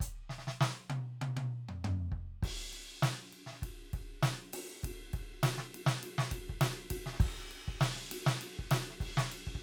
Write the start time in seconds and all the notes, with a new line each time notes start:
0.01 closed hi-hat, kick
0.30 snare
0.39 snare
0.48 snare
0.61 snare
0.90 high tom
1.22 high tom
1.37 high tom
1.69 mid tom
1.85 mid tom
2.12 kick
2.43 kick, ride
2.73 ride
3.01 snare, hi-hat pedal, ride
3.31 hi-hat pedal, ride
3.47 snare
3.53 snare
3.61 kick, snare, ride
3.94 kick, ride
4.23 snare, ride
4.53 open hi-hat, ride
4.83 kick, hi-hat pedal, ride
5.14 kick, ride
5.44 snare, ride
5.58 snare
5.75 ride
5.87 snare
6.00 hi-hat pedal, ride
6.19 snare
6.32 kick, ride
6.50 kick
6.62 snare, ride
6.91 kick, ride
7.07 snare
7.14 snare
7.21 kick, crash
7.52 ride
7.68 kick
7.81 snare, ride
7.96 snare
8.12 hi-hat pedal, ride
8.27 snare
8.39 hi-hat pedal, ride
8.59 kick
8.71 snare, ride
8.90 snare
9.01 kick, ride
9.18 snare
9.32 ride
9.47 kick
9.56 kick